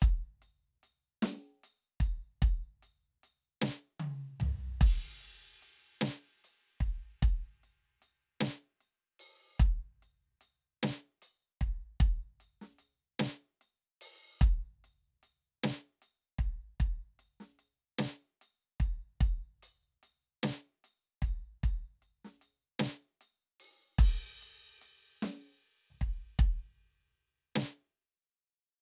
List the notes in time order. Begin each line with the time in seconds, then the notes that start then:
0.01 kick, closed hi-hat, hi-hat pedal
0.42 closed hi-hat
0.84 closed hi-hat
1.23 snare, closed hi-hat
1.64 closed hi-hat
2.01 kick, closed hi-hat
2.43 kick, closed hi-hat
2.83 closed hi-hat
3.24 closed hi-hat
3.62 snare, percussion
4.00 high tom
4.41 floor tom, hi-hat pedal
4.82 kick, crash
5.21 closed hi-hat
5.63 closed hi-hat
6.02 closed hi-hat, snare
6.45 closed hi-hat
6.81 kick, closed hi-hat
7.23 kick, closed hi-hat
7.64 closed hi-hat
8.01 snare, closed hi-hat
8.41 closed hi-hat, snare
8.81 closed hi-hat
9.20 percussion
9.59 kick, closed hi-hat, hi-hat pedal
10.03 closed hi-hat
10.42 closed hi-hat
10.84 snare, closed hi-hat
11.22 closed hi-hat
11.62 kick, closed hi-hat
12.01 kick, closed hi-hat
12.41 closed hi-hat
12.62 snare
12.79 closed hi-hat
13.20 closed hi-hat, snare
13.36 snare
13.62 closed hi-hat
14.02 percussion
14.40 kick, hi-hat pedal
14.46 closed hi-hat
14.85 closed hi-hat
15.23 closed hi-hat
15.64 snare, closed hi-hat
16.02 closed hi-hat
16.39 kick, closed hi-hat
16.80 kick, closed hi-hat
17.20 closed hi-hat
17.41 snare
17.59 closed hi-hat
17.99 closed hi-hat, snare
18.42 closed hi-hat
18.80 kick, closed hi-hat
19.21 kick, closed hi-hat
19.63 closed hi-hat
20.04 closed hi-hat
20.44 snare, closed hi-hat
20.85 closed hi-hat
21.23 kick, closed hi-hat
21.64 kick, closed hi-hat
22.03 closed hi-hat
22.25 snare
22.42 closed hi-hat
22.80 closed hi-hat, snare
23.21 closed hi-hat
23.61 percussion
23.99 kick, hi-hat pedal, crash
24.19 kick
24.43 closed hi-hat
24.82 closed hi-hat
25.23 snare
25.40 snare
25.44 snare
25.47 snare
25.91 snare, floor tom, ride
26.02 kick
26.39 kick
27.56 snare